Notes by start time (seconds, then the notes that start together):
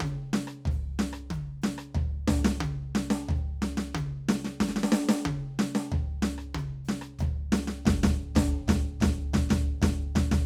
0.01 kick, high tom
0.05 hi-hat pedal
0.33 snare
0.48 cross-stick
0.66 kick, floor tom
0.71 hi-hat pedal
0.99 snare
1.13 cross-stick
1.31 kick, hi-hat pedal, high tom
1.62 snare, hi-hat pedal
1.78 cross-stick
1.95 kick, floor tom
2.28 kick, snare, floor tom
2.45 snare
2.61 kick, hi-hat pedal, high tom
2.95 snare
3.11 snare
3.29 kick, floor tom
3.36 hi-hat pedal
3.62 snare
3.78 snare
3.95 kick, hi-hat pedal, high tom
4.29 snare
4.45 snare
4.60 kick, snare
4.69 snare
4.76 snare
4.84 snare
4.92 snare, hi-hat pedal
5.09 snare
5.26 kick, high tom
5.59 snare
5.75 snare
5.92 kick, floor tom
6.23 snare
6.38 cross-stick
6.55 kick, hi-hat pedal, high tom
6.85 snare, hi-hat pedal
7.02 cross-stick
7.19 kick, floor tom, hi-hat pedal
7.52 snare
7.68 snare
7.86 kick, snare, floor tom
8.04 kick, snare, floor tom
8.35 kick, snare, floor tom
8.68 kick, snare, floor tom
9.01 kick, snare, floor tom
9.34 kick, snare, floor tom
9.49 kick, snare, floor tom
9.82 kick, snare, floor tom
10.16 kick, snare, floor tom
10.32 kick, snare, floor tom